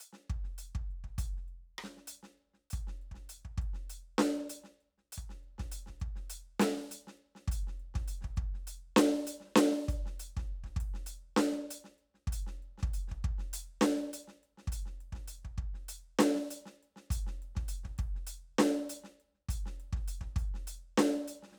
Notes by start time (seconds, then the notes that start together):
0.01 closed hi-hat
0.13 snare
0.29 kick, closed hi-hat
0.44 snare
0.58 closed hi-hat
0.75 kick
0.91 closed hi-hat
1.04 kick, snare
1.18 closed hi-hat, kick
1.37 snare
1.48 closed hi-hat
1.78 cross-stick
1.83 snare
1.97 snare
2.07 closed hi-hat
2.23 snare
2.37 closed hi-hat
2.54 snare
2.70 closed hi-hat, kick
2.87 snare
3.01 closed hi-hat
3.11 kick, snare
3.29 closed hi-hat
3.45 kick
3.58 kick, closed hi-hat
3.73 snare
3.90 closed hi-hat
4.18 snare
4.38 snare
4.49 closed hi-hat
4.64 snare
4.80 closed hi-hat
4.98 snare
5.12 closed hi-hat
5.17 kick
5.29 snare
5.43 closed hi-hat
5.58 kick, snare
5.71 closed hi-hat
5.86 kick, snare
6.00 kick, closed hi-hat
6.16 snare
6.30 closed hi-hat
6.59 snare
6.77 snare
6.91 closed hi-hat
7.07 snare
7.20 closed hi-hat
7.35 snare
7.48 closed hi-hat, kick
7.67 snare
7.79 closed hi-hat
7.94 kick, snare
8.08 closed hi-hat
8.21 kick, snare
8.37 kick, closed hi-hat
8.54 snare
8.67 closed hi-hat
8.96 snare
9.02 cross-stick
9.27 closed hi-hat
9.40 snare
9.44 snare
9.47 snare
9.56 snare
9.71 snare
9.88 closed hi-hat, kick
10.06 snare
10.19 closed hi-hat
10.37 kick, snare
10.63 kick, snare
10.76 kick, closed hi-hat
10.94 snare
11.06 closed hi-hat
11.36 snare
11.51 snare
11.55 snare
11.70 closed hi-hat
11.84 snare
11.98 closed hi-hat
12.14 snare
12.27 kick
12.32 closed hi-hat
12.46 snare
12.62 closed hi-hat
12.78 snare
12.83 kick
12.93 closed hi-hat
13.08 kick, snare
13.23 kick, closed hi-hat
13.38 snare
13.53 closed hi-hat
13.81 snare
13.96 snare
14.00 snare
14.13 closed hi-hat
14.28 snare
14.43 closed hi-hat
14.57 snare
14.67 kick
14.72 closed hi-hat
14.86 snare
15.00 closed hi-hat
15.12 kick, snare
15.28 closed hi-hat
15.44 kick, snare
15.58 kick
15.62 closed hi-hat
15.74 snare
15.88 closed hi-hat
16.19 snare
16.35 snare
16.50 closed hi-hat
16.66 snare
16.83 closed hi-hat
16.96 snare
17.10 closed hi-hat, kick
17.27 snare
17.42 closed hi-hat
17.55 kick, snare
17.68 closed hi-hat
17.84 kick, snare
17.98 kick, closed hi-hat
18.15 snare
18.27 closed hi-hat
18.58 snare
18.65 snare
18.77 snare
18.89 closed hi-hat
19.04 snare
19.20 closed hi-hat
19.34 snare
19.48 closed hi-hat, kick
19.66 snare
19.80 closed hi-hat
19.93 kick, snare
20.08 closed hi-hat
20.21 kick, snare
20.36 closed hi-hat, kick
20.54 snare
20.67 closed hi-hat
20.98 snare
21.28 closed hi-hat
21.42 snare
21.48 snare
21.52 snare
21.55 snare